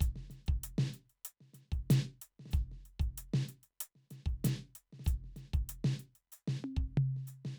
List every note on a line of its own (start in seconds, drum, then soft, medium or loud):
0.01 closed hi-hat medium
0.01 kick medium
0.16 snare soft
0.31 snare soft
0.31 closed hi-hat soft
0.47 kick medium
0.47 closed hi-hat soft
0.64 closed hi-hat loud
0.79 snare medium
0.84 snare soft
0.94 closed hi-hat soft
1.10 closed hi-hat soft
1.25 closed hi-hat loud
1.41 snare soft
1.54 snare soft
1.54 closed hi-hat soft
1.72 kick soft
1.72 closed hi-hat soft
1.91 open hi-hat medium
1.91 snare loud
2.22 open hi-hat medium
2.40 snare soft
2.46 snare soft
2.50 kick medium
2.50 snare soft
2.50 hi-hat pedal medium
2.54 closed hi-hat soft
2.72 snare soft
2.86 closed hi-hat soft
3.00 kick soft
3.00 closed hi-hat soft
3.18 closed hi-hat medium
3.34 snare medium
3.49 closed hi-hat soft
3.64 closed hi-hat soft
3.81 closed hi-hat loud
3.96 snare soft
4.11 snare soft
4.11 closed hi-hat soft
4.26 kick soft
4.26 closed hi-hat soft
4.45 open hi-hat loud
4.45 snare medium
4.47 snare medium
4.76 open hi-hat medium
4.93 snare soft
5.00 snare soft
5.05 closed hi-hat medium
5.05 kick medium
5.05 hi-hat pedal medium
5.24 snare soft
5.37 snare soft
5.37 closed hi-hat soft
5.54 kick medium
5.54 closed hi-hat soft
5.69 closed hi-hat medium
5.85 snare medium
6.00 closed hi-hat soft
6.16 closed hi-hat soft
6.32 hi-hat pedal loud
6.48 snare medium
6.65 high tom medium
6.77 kick soft
6.98 floor tom loud
7.17 snare soft
7.28 hi-hat pedal medium
7.45 snare soft